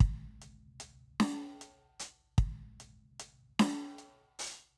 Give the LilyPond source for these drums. \new DrumStaff \drummode { \time 4/4 \tempo 4 = 50 \tuplet 3/2 { <bd hh>8 hh8 hh8 <sn hh>8 hh8 hh8 <bd hh>8 hh8 hh8 <sn hh>8 hh8 hh8 } | }